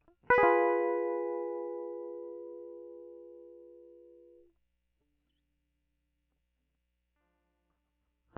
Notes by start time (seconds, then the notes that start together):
0.31 B4
0.39 G#4
0.44 F4